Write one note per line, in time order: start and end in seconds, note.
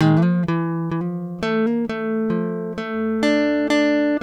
0.01 0.23 A#2
0.01 0.18 D#3
0.01 0.18 G#3
0.19 0.49 F3
0.19 0.48 A#3
0.50 0.92 E3
0.50 0.85 E3
0.93 1.03 E3
1.03 1.43 F3
1.44 1.81 E3
1.44 1.68 A3
1.68 1.90 A#3
1.91 2.75 A3
2.31 2.91 F3
2.79 4.20 A3
3.24 3.72 D4
3.72 4.20 D4